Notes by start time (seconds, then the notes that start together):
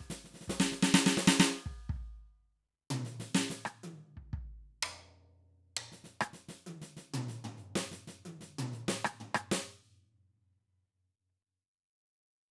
0.01 open hi-hat, kick
0.11 snare
0.25 snare
0.31 snare
0.35 snare
0.42 snare
0.48 kick, snare
0.61 snare
0.73 snare
0.83 snare
0.95 snare
1.07 snare
1.18 snare
1.28 snare
1.40 snare
1.67 kick
1.72 kick
1.90 kick
1.97 kick
2.01 kick
2.91 mid tom
3.06 snare
3.20 snare
3.35 snare
3.51 snare
3.66 cross-stick
3.84 high tom
4.18 kick
4.34 kick
4.83 floor tom
5.77 mid tom
5.93 snare
6.05 snare
6.21 cross-stick
6.34 snare
6.49 snare
6.67 high tom
6.82 snare
6.97 snare
7.14 mid tom
7.29 snare
7.45 floor tom
7.58 snare
7.76 snare
7.92 snare
8.08 snare
8.26 high tom
8.41 snare
8.59 mid tom
8.73 snare
8.89 snare
9.05 cross-stick
9.21 floor tom
9.35 cross-stick
9.52 snare